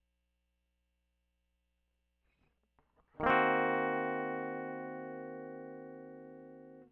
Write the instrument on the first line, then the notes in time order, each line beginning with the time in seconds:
electric guitar
3.21 D#3 A#3
3.27 C4 F#4